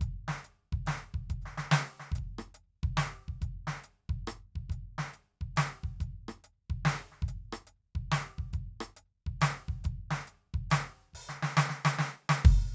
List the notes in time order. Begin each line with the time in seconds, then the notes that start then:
0.01 closed hi-hat, kick
0.28 snare
0.44 closed hi-hat
0.73 kick
0.87 closed hi-hat, snare
1.14 kick
1.30 closed hi-hat, kick
1.41 hi-hat pedal
1.46 snare
1.58 snare
1.71 snare
1.85 open hi-hat, hi-hat pedal
2.00 snare
2.12 closed hi-hat, kick
2.18 kick
2.39 cross-stick
2.54 closed hi-hat
2.83 kick
2.97 closed hi-hat, snare
3.28 kick
3.42 closed hi-hat, kick
3.67 snare
3.84 closed hi-hat
4.09 kick
4.27 closed hi-hat, cross-stick
4.56 kick
4.70 closed hi-hat, kick
4.98 snare
5.14 closed hi-hat
5.41 kick
5.56 closed hi-hat, snare
5.84 kick
6.00 closed hi-hat, kick
6.28 cross-stick
6.44 closed hi-hat
6.70 kick
6.85 closed hi-hat, snare
7.12 snare
7.22 kick
7.28 closed hi-hat
7.53 cross-stick
7.67 closed hi-hat
7.95 kick
8.12 closed hi-hat, snare
8.38 kick
8.53 closed hi-hat, kick
8.81 cross-stick
8.97 closed hi-hat
9.26 kick
9.41 closed hi-hat, snare
9.68 kick
9.84 closed hi-hat, kick
10.11 snare
10.27 closed hi-hat
10.54 kick
10.71 closed hi-hat, snare
11.14 open hi-hat, kick
11.29 snare
11.43 snare
11.57 snare
11.69 snare
11.85 snare
11.99 snare
12.29 snare
12.45 open hi-hat, kick